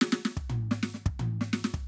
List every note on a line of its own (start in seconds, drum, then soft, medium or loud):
0.01 snare loud
0.12 snare loud
0.25 snare medium
0.37 kick medium
0.50 floor tom loud
0.71 snare loud
0.83 snare medium
0.94 snare medium
1.06 kick loud
1.19 floor tom loud
1.19 high tom loud
1.41 snare medium
1.53 snare loud
1.64 snare loud
1.74 kick medium